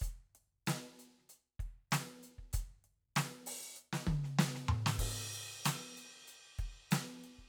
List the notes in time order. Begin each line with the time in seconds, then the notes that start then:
0.01 closed hi-hat, kick, hi-hat pedal
0.35 closed hi-hat
0.67 open hi-hat, snare
0.99 closed hi-hat
1.19 snare
1.23 snare
1.26 closed hi-hat, snare
1.60 kick, closed hi-hat
1.91 closed hi-hat, snare, hi-hat pedal
2.23 closed hi-hat
2.39 kick
2.43 snare
2.50 closed hi-hat, snare
2.54 kick
2.60 kick
2.84 closed hi-hat
3.16 closed hi-hat, snare
3.28 snare
3.47 open hi-hat
3.60 snare
3.64 snare
3.76 hi-hat pedal
3.93 snare
4.07 kick, high tom
4.24 snare
4.39 snare
4.55 snare
4.69 mid tom
4.86 snare
4.94 hi-hat pedal
4.99 kick, crash
5.20 snare
5.25 snare
5.28 snare
5.33 closed hi-hat
5.65 closed hi-hat, snare
5.83 snare
5.97 closed hi-hat
6.20 snare
6.28 closed hi-hat
6.40 snare
6.46 snare
6.59 kick, closed hi-hat
6.90 closed hi-hat, snare, hi-hat pedal
7.24 closed hi-hat
7.39 kick